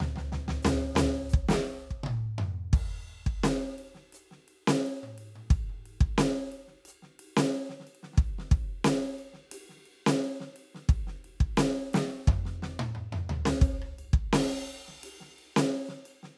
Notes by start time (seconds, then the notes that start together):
0.01 snare, floor tom
0.16 snare, floor tom
0.33 snare, floor tom
0.49 snare, floor tom
0.63 snare, floor tom, hi-hat pedal
0.96 snare, floor tom, hi-hat pedal
1.04 kick
1.30 hi-hat pedal
1.34 kick
1.49 kick, snare
1.52 snare
1.91 kick
2.01 kick, high tom
2.07 high tom
2.39 mid tom
2.74 kick, crash
3.10 ride bell
3.27 kick
3.44 snare, ride
3.79 ride
3.95 snare
4.13 hi-hat pedal, ride
4.32 snare
4.49 ride
4.68 snare
4.74 hi-hat pedal
4.87 ride
5.04 high tom
5.19 ride
5.36 high tom
5.51 kick, ride bell
5.70 high tom
5.86 ride
6.01 kick
6.19 snare, ride bell
6.53 ride
6.68 snare
6.86 hi-hat pedal, ride bell
7.03 snare
7.20 ride
7.37 snare
7.44 hi-hat pedal
7.54 ride bell
7.70 snare
7.81 snare
7.88 ride bell
7.96 ride
8.04 snare
8.14 snare
8.18 kick, ride
8.25 hi-hat pedal
8.39 snare
8.52 kick, ride
8.85 snare, hi-hat pedal, ride
9.14 hi-hat pedal
9.19 ride bell
9.34 snare
9.52 hi-hat pedal, ride
9.70 snare
9.78 snare
9.86 ride
10.07 snare, hi-hat pedal
10.25 ride
10.41 snare
10.57 ride
10.75 snare
10.89 kick, ride
11.08 snare
11.25 ride
11.41 kick
11.58 snare, ride
11.94 snare, ride
12.28 kick, mid tom
12.46 snare
12.63 snare
12.80 high tom
12.96 mid tom
13.13 mid tom
13.30 floor tom
13.46 snare
13.62 kick, ride bell
13.83 cross-stick
13.99 ride bell
14.14 kick
14.34 snare, crash
14.67 ride
14.89 snare
15.04 hi-hat pedal, ride
15.21 snare
15.39 ride
15.57 snare
15.62 hi-hat pedal
15.86 snare, hi-hat pedal
16.06 ride bell
16.24 snare